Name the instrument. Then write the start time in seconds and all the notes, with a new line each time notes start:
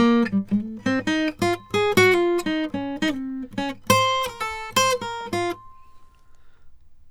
acoustic guitar
0.00 A#3
0.35 G3
0.54 G#3
0.88 C4
1.09 D#4
1.44 F4
1.76 G#4
1.99 F#4
2.15 F4
2.48 D#4
2.76 C#4
3.04 D#4
3.16 C4
3.60 C#4
3.92 C5
4.28 A#4
4.42 A4
4.78 C5
5.04 A#4